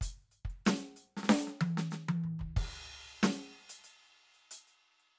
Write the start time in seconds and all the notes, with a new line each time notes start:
0.01 closed hi-hat, kick
0.17 closed hi-hat
0.31 closed hi-hat
0.45 kick
0.50 closed hi-hat
0.65 closed hi-hat, snare
0.96 closed hi-hat
1.17 snare
1.23 snare
1.27 snare
1.29 snare
1.47 snare
1.61 high tom
1.77 snare
1.91 snare, hi-hat pedal
2.08 high tom
2.24 mid tom
2.39 kick, floor tom
2.56 kick, crash
2.71 closed hi-hat
2.88 closed hi-hat
3.05 closed hi-hat
3.23 snare
3.41 closed hi-hat
3.53 closed hi-hat
3.69 closed hi-hat
3.84 closed hi-hat
4.01 closed hi-hat
4.34 closed hi-hat
4.51 closed hi-hat
4.67 closed hi-hat
4.83 closed hi-hat
5.00 closed hi-hat